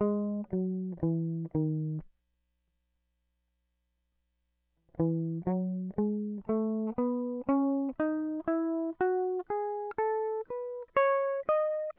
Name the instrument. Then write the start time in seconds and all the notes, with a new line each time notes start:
electric guitar
0.02 G#3
0.54 F#3
1.04 E3
1.56 D#3
5.01 E3
5.48 F#3
5.99 G#3
6.50 A3
6.99 B3
7.49 C#4
8.00 D#4
8.48 E4
9.01 F#4
9.51 G#4
9.99 A4
10.51 B4
10.97 C#5
11.49 D#5